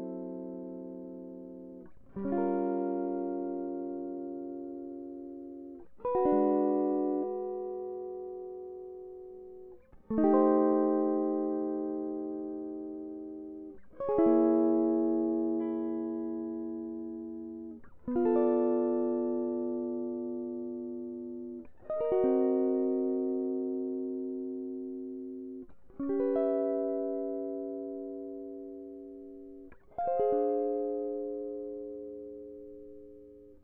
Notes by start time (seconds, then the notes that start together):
2.17 G3
2.25 C#4
2.33 F4
2.38 A#4
6.06 B4
6.16 F#4
6.27 D4
6.34 G#3
10.11 A3
10.19 D#4
10.25 G4
10.34 C5
14.01 C#5
14.09 G#4
14.21 E4
14.29 A#3
18.09 B3
18.17 F4
18.27 A4
18.38 D5
21.91 D#5
22.01 A#4
22.14 F#4
22.26 C4
25.99 C#4
26.10 G4
26.20 B4
26.38 E5
29.99 F5
30.08 C5
30.20 G#4
30.35 D4